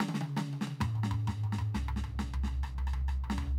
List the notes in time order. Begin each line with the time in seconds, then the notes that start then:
0.00 snare, high tom
0.08 high tom
0.14 snare
0.21 high tom
0.37 snare, high tom
0.53 high tom
0.61 snare
0.67 high tom
0.80 snare, mid tom
0.95 mid tom
1.03 snare
1.11 mid tom
1.27 snare, mid tom
1.43 mid tom
1.52 snare
1.58 mid tom
1.74 snare, floor tom
1.88 floor tom
1.96 snare
2.04 floor tom
2.19 snare, floor tom
2.34 floor tom
2.43 snare
2.48 floor tom
2.63 cross-stick, floor tom
2.78 floor tom
2.87 cross-stick
2.93 floor tom
3.08 cross-stick, floor tom
3.24 floor tom
3.30 snare
3.38 floor tom